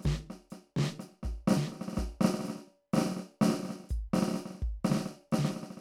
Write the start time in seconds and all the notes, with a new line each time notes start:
0.01 snare, hi-hat pedal
0.05 kick, snare
0.11 kick
0.15 snare
0.23 snare
0.31 snare
0.51 snare, hi-hat pedal
0.77 snare
0.79 snare
0.84 snare
1.00 snare, hi-hat pedal
1.09 snare
1.13 snare
1.23 kick, snare
1.30 kick
1.48 snare, hi-hat pedal
1.51 snare
1.53 snare
1.57 snare
1.66 snare
1.68 snare
1.73 snare
1.76 snare
1.80 snare
1.82 snare
1.88 snare
1.94 snare, hi-hat pedal
1.98 kick, snare
2.04 kick
2.21 snare
2.25 snare
2.29 snare
2.35 snare
2.40 snare
2.44 snare, hi-hat pedal
2.49 snare
2.56 snare
2.58 snare
2.68 snare
2.94 snare, hi-hat pedal
2.97 snare
3.02 snare
3.06 snare
3.10 snare
3.12 snare
3.17 snare
3.20 snare
3.42 snare, hi-hat pedal
3.46 snare
3.49 snare
3.51 snare
3.54 snare
3.60 snare
3.64 snare
3.66 snare
3.69 snare
3.76 snare
3.81 snare
3.84 snare
3.90 kick, hi-hat pedal
3.94 kick, snare
3.99 kick
4.14 snare
4.17 snare
4.19 snare
4.23 snare
4.29 snare
4.32 snare
4.34 snare
4.36 snare, hi-hat pedal
4.40 snare
4.51 snare
4.55 snare
4.59 kick, snare
4.85 snare, hi-hat pedal
4.90 snare
4.92 snare
4.97 snare
5.01 snare
5.06 snare
5.11 snare
5.32 snare, hi-hat pedal
5.39 snare
5.45 snare
5.49 snare
5.51 snare
5.56 snare
5.62 snare
5.64 snare
5.71 snare
5.78 snare